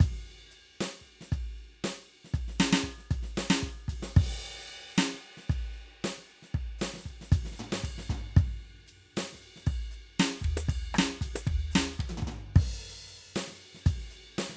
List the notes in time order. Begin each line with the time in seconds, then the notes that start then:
0.01 kick, hi-hat pedal, ride
0.51 hi-hat pedal, ride
0.81 snare, ride
1.02 kick, hi-hat pedal
1.07 ride
1.22 snare
1.33 kick, ride
1.57 hi-hat pedal, ride
1.85 snare, ride
2.10 ride
2.25 snare
2.35 kick, ride
2.49 snare
2.59 snare, hi-hat pedal
2.73 snare
2.84 kick, ride bell
2.99 snare
3.11 kick, ride
3.23 snare
3.36 snare, hi-hat pedal
3.51 snare
3.63 kick, ride
3.77 snare
3.89 kick, ride
4.03 snare
4.15 kick, hi-hat pedal, ride
4.69 hi-hat pedal
4.99 snare, ride
5.15 snare
5.38 snare
5.50 kick, ride
5.75 hi-hat pedal, ride
6.05 snare, ride
6.18 snare
6.27 hi-hat pedal, ride
6.43 snare
6.55 kick, ride bell
6.79 snare, hi-hat pedal, ride
6.94 snare
6.98 snare
7.03 kick, snare, hi-hat pedal
7.08 ride
7.22 snare
7.29 kick, hi-hat pedal, ride
7.46 snare
7.52 snare
7.57 floor tom, hi-hat pedal
7.73 snare
7.84 kick, ride bell
7.99 snare
8.07 kick, floor tom, hi-hat pedal
8.35 kick, hi-hat pedal, ride
8.87 hi-hat pedal, ride
9.17 snare, ride
9.33 kick, snare
9.39 hi-hat pedal, ride
9.57 snare
9.67 kick, ride bell
9.92 hi-hat pedal, ride
10.20 snare, ride
10.42 kick, hi-hat pedal, mid tom
10.58 high tom
10.69 kick, ride bell
10.93 kick, cross-stick, hi-hat pedal
10.99 snare
11.22 kick, ride
11.36 high tom
11.47 kick, mid tom
11.72 hi-hat pedal, ride bell
11.76 snare
11.90 snare
12.00 kick, mid tom
12.10 high tom
12.18 floor tom
12.23 kick
12.28 floor tom
12.55 kick, hi-hat pedal, crash
13.08 hi-hat pedal
13.36 snare, ride
13.48 snare
13.51 snare
13.53 snare
13.61 ride
13.75 snare
13.87 kick, ride
14.11 hi-hat pedal, ride
14.39 snare, ride bell
14.50 snare
14.54 snare